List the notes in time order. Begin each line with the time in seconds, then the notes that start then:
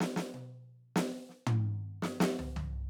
0.00 snare
0.16 snare
0.34 high tom
0.96 snare
1.29 snare
1.47 mid tom
2.02 snare
2.20 snare
2.39 floor tom
2.56 floor tom